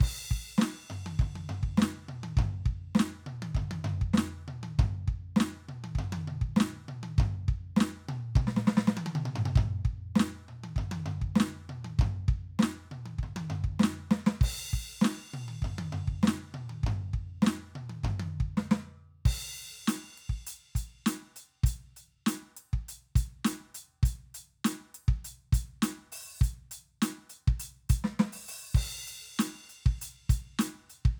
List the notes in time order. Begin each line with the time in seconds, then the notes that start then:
0.01 kick, crash
0.31 kick
0.58 snare
0.62 snare, hi-hat pedal
0.90 floor tom
1.06 high tom
1.20 kick, floor tom
1.36 high tom
1.50 floor tom
1.63 kick
1.78 snare
1.82 snare
2.09 mid tom
2.24 high tom
2.37 kick, floor tom
2.66 kick
2.95 snare
3.00 snare
3.27 mid tom
3.43 high tom
3.55 kick, floor tom
3.71 high tom
3.85 floor tom
4.02 kick
4.14 snare
4.18 snare
4.48 mid tom
4.63 high tom
4.79 kick, floor tom
5.08 kick
5.37 snare
5.41 snare
5.69 mid tom
5.84 high tom
5.96 kick, floor tom
6.13 high tom
6.28 mid tom
6.42 kick
6.57 snare
6.61 snare
6.89 mid tom
7.04 high tom
7.19 kick, floor tom
7.49 kick
7.77 snare
7.81 snare
8.09 mid tom
8.36 kick, mid tom
8.48 snare
8.57 snare
8.68 snare
8.78 snare
8.82 hi-hat pedal
8.88 snare
8.97 high tom
9.06 high tom
9.16 mid tom
9.26 mid tom
9.36 floor tom
9.46 mid tom
9.56 kick, floor tom
9.85 kick
10.16 snare
10.20 snare
10.49 mid tom
10.64 high tom
10.76 kick, floor tom
10.92 high tom
11.06 floor tom
11.22 kick
11.36 snare
11.40 snare
11.70 mid tom
11.85 high tom
11.99 kick, floor tom
12.29 kick
12.60 snare
12.63 snare
12.92 mid tom
13.06 high tom
13.19 kick
13.23 floor tom
13.37 high tom
13.50 floor tom
13.64 kick
13.80 snare
13.84 snare
14.11 snare
14.27 snare
14.41 kick, crash
14.73 kick
15.02 snare
15.05 snare
15.34 mid tom
15.49 high tom
15.62 kick, floor tom
15.79 high tom
15.93 floor tom
16.08 kick
16.23 snare
16.28 snare
16.55 mid tom
16.70 high tom
16.84 kick, floor tom
17.14 kick
17.43 snare
17.47 snare
17.76 mid tom
17.90 high tom
18.04 kick, floor tom
18.20 high tom
18.41 kick
18.58 snare
18.71 snare
19.26 kick, crash
19.56 open hi-hat
19.88 closed hi-hat, snare
20.18 closed hi-hat
20.30 kick
20.47 closed hi-hat
20.76 closed hi-hat, kick
21.07 closed hi-hat, snare
21.36 closed hi-hat
21.64 closed hi-hat, kick
21.97 closed hi-hat
22.27 closed hi-hat, snare
22.57 closed hi-hat
22.73 kick
22.89 closed hi-hat
23.16 closed hi-hat, kick
23.45 closed hi-hat, snare
23.75 closed hi-hat
24.03 closed hi-hat, kick
24.35 closed hi-hat
24.65 closed hi-hat, snare
24.95 closed hi-hat
25.09 kick
25.25 closed hi-hat
25.53 closed hi-hat, kick
25.83 closed hi-hat, snare
26.12 open hi-hat
26.40 closed hi-hat, kick, hi-hat pedal
26.71 closed hi-hat
27.02 closed hi-hat, snare
27.30 closed hi-hat
27.48 kick
27.60 closed hi-hat
27.90 closed hi-hat, kick
28.05 snare
28.20 snare
28.33 open hi-hat
28.49 open hi-hat
28.75 kick, hi-hat pedal, crash
29.07 closed hi-hat
29.39 closed hi-hat, snare
29.70 closed hi-hat
29.86 kick, snare
30.02 closed hi-hat
30.30 closed hi-hat, kick
30.59 closed hi-hat, snare
30.90 closed hi-hat
31.05 kick